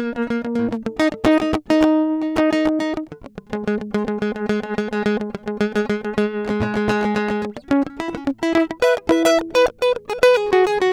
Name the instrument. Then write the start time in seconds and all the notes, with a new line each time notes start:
acoustic guitar
0.01 A#3
0.18 A#3
0.32 A#3
0.46 A#3
0.56 A2 A#3
1.00 D#4
1.26 D#4
1.39 D#4
1.71 D#4
1.82 D#4
2.24 D#4
2.37 D#4
2.54 D#4
2.67 D#4
2.81 D#4
2.99 D#4
3.54 G#3
3.69 G#3
3.83 G#3
3.95 G#3
4.09 G#3
4.23 G#3
4.37 G#3
4.51 G#3
4.65 G#3
4.79 G#3
4.94 G#3
5.07 G#3
5.22 G#3
5.36 G#3
5.49 G#3
5.62 G#3
5.77 G#3
5.91 G#3
6.06 G#3
6.19 G#3
6.49 G#3
6.63 G#3
6.78 G#3
6.91 G#3
7.07 G#3
7.17 G#3
7.32 G#3
7.72 C#4
7.83 C#4
8.01 E4
8.10 E4
8.44 E4
8.57 E4
8.83 B4 E5
9.10 E4 B4 E5
9.27 E4 B4 E5
9.56 E4 B4
9.83 B4
10.24 B4
10.38 G#4
10.54 F#4 G#4
10.68 G#4
10.83 F#4